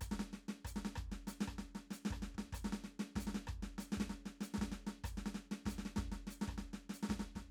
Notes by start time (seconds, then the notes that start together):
0.01 kick, cross-stick, hi-hat pedal
0.12 snare
0.20 snare
0.33 snare
0.49 snare
0.65 kick, cross-stick, hi-hat pedal
0.76 snare
0.85 snare
0.96 kick, cross-stick
1.12 snare
1.27 snare, hi-hat pedal
1.41 snare
1.48 kick, cross-stick
1.59 snare
1.75 snare
1.91 snare, hi-hat pedal
2.05 snare
2.11 kick, cross-stick
2.22 snare
2.35 kick, snare
2.53 kick, cross-stick, hi-hat pedal
2.65 snare
2.73 snare
2.84 snare
3.00 snare
3.16 kick, snare
3.20 hi-hat pedal
3.27 snare
3.35 snare
3.47 kick, cross-stick
3.63 snare
3.78 snare, hi-hat pedal
3.92 snare
3.97 kick, snare
4.10 snare
4.26 snare
4.41 snare, hi-hat pedal
4.54 kick, snare
4.62 snare
4.72 snare
4.87 snare
5.04 kick, cross-stick, hi-hat pedal
5.17 snare
5.26 snare
5.35 snare
5.51 snare
5.66 kick, snare, hi-hat pedal
5.79 snare
5.85 snare
5.96 kick, snare
6.05 kick
6.12 snare
6.27 snare, hi-hat pedal
6.42 snare
6.48 kick, cross-stick
6.58 snare
6.73 snare
6.90 snare
6.94 hi-hat pedal
7.03 snare
7.09 kick, snare
7.20 snare
7.36 kick, snare